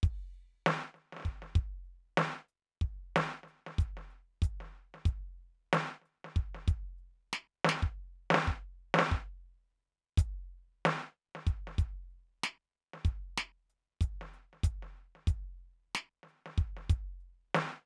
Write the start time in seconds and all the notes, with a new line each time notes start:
0.03 closed hi-hat, kick
0.08 crash
0.34 closed hi-hat
0.66 snare, closed hi-hat
0.94 snare, closed hi-hat
1.12 snare
1.16 snare
1.20 snare
1.22 kick, snare, closed hi-hat
1.42 snare
1.55 kick, closed hi-hat
1.85 closed hi-hat
2.17 closed hi-hat, snare
2.48 closed hi-hat
2.81 kick, closed hi-hat
3.16 closed hi-hat, snare
3.43 snare
3.48 closed hi-hat
3.66 snare
3.78 kick, closed hi-hat
3.97 snare
4.10 closed hi-hat
4.42 closed hi-hat, kick
4.60 snare
4.65 snare
4.75 closed hi-hat
4.94 snare
5.05 kick, closed hi-hat
5.73 closed hi-hat, snare
6.01 snare, closed hi-hat
6.24 snare
6.36 kick, closed hi-hat
6.55 snare
6.68 closed hi-hat, kick
6.98 closed hi-hat
7.33 closed hi-hat, snare
7.64 snare
7.69 snare
7.82 kick
8.30 snare
8.34 snare
8.47 kick
8.94 snare
8.99 snare
9.11 kick
10.17 kick, closed hi-hat
10.85 closed hi-hat, snare
11.35 snare
11.47 kick, closed hi-hat
11.67 snare
11.78 kick, closed hi-hat
12.10 closed hi-hat
12.43 closed hi-hat, snare
12.93 snare
13.05 kick, closed hi-hat
13.38 closed hi-hat, snare
13.70 closed hi-hat
14.01 closed hi-hat, kick
14.21 snare
14.34 closed hi-hat
14.53 snare
14.63 closed hi-hat, kick
14.82 snare
14.96 closed hi-hat
15.15 snare
15.27 kick, closed hi-hat
15.95 closed hi-hat, snare
16.23 snare
16.28 closed hi-hat
16.46 snare
16.58 kick, closed hi-hat
16.77 snare
16.89 closed hi-hat, kick
17.20 closed hi-hat
17.55 closed hi-hat, snare